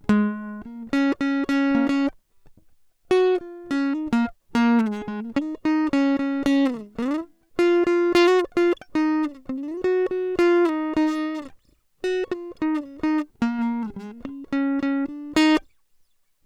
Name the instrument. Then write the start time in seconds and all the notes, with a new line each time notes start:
acoustic guitar
0.11 G#3
0.63 A#3
0.95 C#4
1.22 C#4
1.51 C#4
1.77 A#3
1.92 C#4
3.13 F#4
3.38 F4
3.72 C#4
3.95 D#4
4.14 A#3
4.57 A#3
4.81 G#3
5.10 G#3
5.22 A#3
5.32 G#3
5.38 D#4
5.67 D#4
5.95 C#4
6.22 C#4
6.48 C#4
7.00 D4
7.61 F4
7.89 F4
8.17 F4
8.29 F#4
8.59 F4
8.97 D#4
9.51 C#4
9.86 F#4
10.08 F#4
10.41 F4
10.67 D#4
10.99 D#4
12.05 F#4
12.33 F4
12.64 D#4
12.77 D4
13.05 D#4
13.44 A#3
13.99 G#3
14.13 A#3
14.27 C#4
14.54 C#4
14.85 C#4
15.08 D4
15.38 D#4